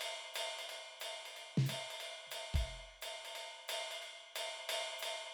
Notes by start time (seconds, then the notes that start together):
0.01 ride
0.34 hi-hat pedal, ride
0.59 ride
0.69 ride
1.00 hi-hat pedal, ride
1.26 ride
1.36 ride
1.58 snare
1.66 hi-hat pedal, ride
1.90 ride
2.00 ride
2.27 snare
2.31 hi-hat pedal, ride
2.54 kick, ride
3.02 hi-hat pedal, ride
3.25 ride
3.35 ride
3.68 hi-hat pedal, ride
3.88 hi-hat pedal, ride
4.02 ride
4.35 hi-hat pedal, ride
4.69 ride
4.99 hi-hat pedal, ride